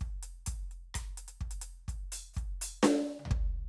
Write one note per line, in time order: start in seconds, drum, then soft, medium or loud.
0.01 kick soft
0.23 closed hi-hat medium
0.46 kick soft
0.46 closed hi-hat loud
0.71 closed hi-hat soft
0.95 kick soft
0.95 cross-stick medium
0.95 closed hi-hat medium
1.18 closed hi-hat medium
1.28 closed hi-hat medium
1.41 kick soft
1.51 closed hi-hat medium
1.62 closed hi-hat medium
1.88 kick soft
1.88 closed hi-hat medium
2.12 open hi-hat loud
2.34 kick medium
2.34 hi-hat pedal soft
2.38 closed hi-hat soft
2.62 open hi-hat loud
2.83 snare loud
2.83 hi-hat pedal medium
3.19 high tom soft
3.25 floor tom medium
3.31 kick medium